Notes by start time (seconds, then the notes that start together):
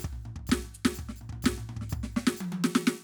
0.01 percussion
0.05 kick
0.13 floor tom
0.22 floor tom, percussion
0.36 kick, floor tom
0.48 kick, percussion
0.52 snare
0.63 floor tom
0.75 floor tom
0.85 kick, snare
0.95 floor tom, percussion
0.99 kick
1.09 snare
1.17 percussion
1.22 floor tom
1.30 kick, floor tom
1.43 kick, snare, percussion
1.58 floor tom
1.70 floor tom
1.77 kick
1.82 snare
1.90 kick, floor tom, percussion
2.04 snare
2.12 percussion
2.17 snare
2.27 snare
2.38 high tom, percussion
2.53 high tom
2.65 snare
2.76 snare
2.88 snare